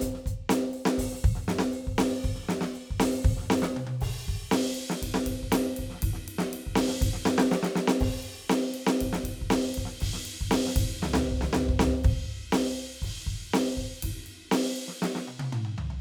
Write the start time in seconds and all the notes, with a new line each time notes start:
0.01 closed hi-hat, kick
0.14 snare
0.26 closed hi-hat, kick
0.49 closed hi-hat, snare
0.73 open hi-hat
0.85 snare
0.98 open hi-hat, kick
1.12 snare
1.24 open hi-hat, kick
1.35 snare
1.48 snare
1.59 snare
1.72 open hi-hat
1.87 kick
1.98 snare, crash
2.22 open hi-hat, kick
2.35 snare
2.42 snare
2.49 snare
2.61 snare
2.73 open hi-hat
2.90 kick
3.00 open hi-hat, snare
3.24 open hi-hat, kick
3.37 snare
3.42 snare
3.50 snare
3.57 hi-hat pedal
3.62 snare
3.76 high tom
3.87 high tom
4.01 kick, hi-hat pedal, crash
4.28 kick
4.51 snare, hi-hat pedal, ride
4.74 hi-hat pedal, ride
4.90 snare
5.02 kick, ride
5.14 snare
5.26 kick, ride
5.42 kick
5.52 snare, ride
5.77 kick, ride
5.90 snare
5.94 snare
6.02 kick, ride
6.13 snare
6.21 snare
6.28 ride
6.38 snare
6.53 ride
6.66 kick
6.76 snare, ride
6.88 snare
6.93 snare
7.01 kick, ride
7.13 snare
7.25 snare
7.38 snare
7.51 snare
7.63 snare
7.76 snare
7.88 snare
8.00 kick, crash
8.23 ride
8.49 snare, ride
8.74 ride
8.87 snare
9.01 kick, ride
9.13 snare
9.23 kick, ride
9.41 kick
9.50 snare, ride
9.74 kick, ride
9.85 snare
9.97 snare, ride
10.02 kick
10.13 snare
10.25 ride
10.41 kick
10.51 snare, ride
10.67 snare
10.76 kick, ride
11.02 snare, floor tom
11.14 snare, floor tom
11.31 kick
11.41 snare, floor tom
11.53 snare, floor tom
11.69 kick
11.79 snare, floor tom
12.04 kick, ride
12.52 snare, ride
13.02 kick, ride
13.26 kick
13.54 snare, ride
13.77 kick
14.03 kick, ride
14.26 ride
14.51 snare, ride
14.76 ride bell
14.88 snare
15.02 snare
15.15 snare
15.27 high tom
15.39 high tom
15.52 mid tom
15.65 mid tom
15.78 floor tom
15.90 floor tom